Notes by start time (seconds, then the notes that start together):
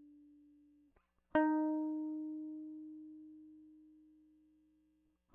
1.36 D#4